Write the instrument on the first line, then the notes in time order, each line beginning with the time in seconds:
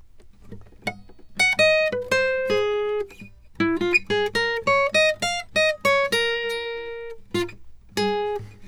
acoustic guitar
1.40 F#5
1.60 D#5
1.93 B4
2.12 C5
2.51 G#4
3.61 E4
3.82 F4
4.11 G#4
4.36 A#4
4.68 C#5
4.95 D#5
5.23 F5
5.57 D#5
5.86 C#5
6.13 A#4
7.36 F4
7.98 G#4